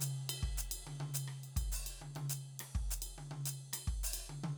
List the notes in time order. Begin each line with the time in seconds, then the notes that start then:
0.01 hi-hat pedal, ride bell
0.30 ride bell
0.43 kick
0.56 kick, hi-hat pedal
0.72 ride bell
0.87 high tom
1.00 high tom
1.14 hi-hat pedal, ride bell
1.28 cross-stick
1.44 ride bell
1.57 kick, ride bell
1.72 hi-hat pedal
1.87 ride bell
2.02 high tom
2.15 high tom, ride
2.30 hi-hat pedal, ride bell
2.60 cross-stick, ride
2.75 kick
2.91 hi-hat pedal
3.02 ride bell
3.18 high tom
3.31 high tom
3.46 hi-hat pedal, ride bell
3.73 cross-stick, ride bell
3.87 kick
4.04 hi-hat pedal
4.14 ride bell
4.30 high tom
4.44 high tom